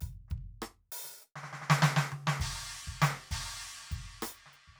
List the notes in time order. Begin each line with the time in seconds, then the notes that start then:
0.01 open hi-hat, kick, hi-hat pedal
0.12 kick
0.28 kick, snare, closed hi-hat
0.37 kick
0.62 closed hi-hat, cross-stick
0.92 open hi-hat
1.04 snare
1.20 closed hi-hat, hi-hat pedal
1.35 snare
1.43 snare
1.53 snare
1.61 snare
1.70 snare
1.82 snare, hi-hat pedal
1.96 snare
2.10 hi-hat pedal, high tom
2.27 snare
2.40 kick, crash
2.49 kick
2.55 snare
2.71 closed hi-hat, snare
2.87 kick
3.02 open hi-hat, snare, hi-hat pedal
3.28 kick, snare, crash
3.60 hi-hat pedal
3.75 snare
3.79 snare
3.81 snare
3.87 snare
3.91 closed hi-hat, kick
3.97 kick
4.22 open hi-hat, cross-stick
4.46 snare
4.53 closed hi-hat
4.67 kick
4.76 snare